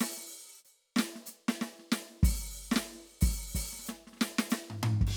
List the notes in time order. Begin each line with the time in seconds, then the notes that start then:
0.00 open hi-hat, snare
0.17 snare
0.65 hi-hat pedal
0.96 snare
0.99 snare
1.15 snare
1.26 snare, hi-hat pedal
1.48 snare
1.61 snare
1.79 snare
1.92 snare
2.23 open hi-hat, kick
2.71 snare
2.76 snare
3.21 open hi-hat, kick
3.55 open hi-hat, kick
3.72 snare
3.79 snare
3.83 snare, hi-hat pedal
3.88 snare
4.07 snare
4.13 snare
4.16 snare
4.20 snare
4.38 snare
4.49 snare, hi-hat pedal
4.70 floor tom
4.83 floor tom
5.01 kick
5.07 ride